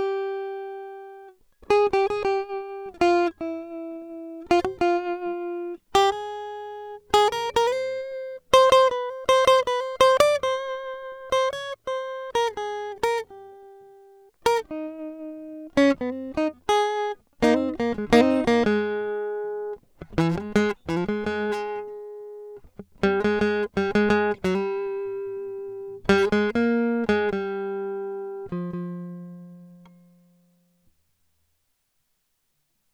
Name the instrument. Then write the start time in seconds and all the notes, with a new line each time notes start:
acoustic guitar
0.00 G4
1.72 G#4
1.95 G4
2.12 G#4
2.25 G4
3.03 F4
3.43 E4
4.53 F4
4.66 F#4
4.83 F4
5.96 G4
6.12 G#4
7.15 G#4
7.30 A#4
7.58 A#4
7.68 C5
8.55 C5
8.74 C5
8.90 B4
9.11 C5
9.30 C5
9.50 C5
9.69 B4
9.82 C5
10.02 C5
10.22 D5
10.45 C5
11.34 C5
11.51 C#5
11.55 C#5
11.89 C5
12.37 A#4
12.59 G#4
13.05 A#4
13.21 A4
14.73 D#4
15.79 C#4
16.03 B3
16.12 C4
16.39 D#4
16.70 G#4
17.44 A#3 D#4
17.56 C4
17.81 A#3
17.94 G#3
18.07 D3
18.14 A#3 D#4
18.23 C4
18.46 A#3 D#4
18.68 G#3
20.20 E3
20.40 G#3
20.57 G#3
20.90 F3
21.11 G#3
21.29 G#3
23.05 G3
23.27 G#3
23.44 G#3
23.79 G3
23.97 G#3
24.12 G#3
24.46 F#3
24.57 G3
26.11 G3
26.34 G#3
26.57 A#3
27.11 G#3
27.35 G3
28.54 F3
28.76 F3